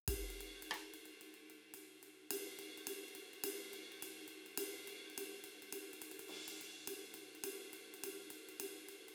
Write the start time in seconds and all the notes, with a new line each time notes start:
0.08 kick, ride
0.15 kick
0.30 ride
0.40 ride
0.62 ride
0.71 cross-stick, ride
0.94 ride
1.05 ride
1.21 ride
1.34 ride
1.50 ride
1.74 ride
2.03 ride
2.30 ride
2.59 ride
2.77 ride
2.87 ride
3.08 ride
3.15 ride
3.33 ride
3.44 ride
3.73 ride
3.92 ride
4.02 ride
4.28 ride
4.46 ride
4.57 ride
4.87 ride
5.10 ride
5.18 ride
5.44 ride
5.62 ride
5.72 ride
5.93 ride
6.02 ride
6.11 ride
6.19 ride
6.28 ride
6.48 ride
6.61 ride
6.87 ride
7.14 ride
7.35 ride
7.44 ride
7.73 ride
7.94 ride
8.03 ride
8.30 ride
8.49 ride
8.60 ride
8.88 ride
9.08 ride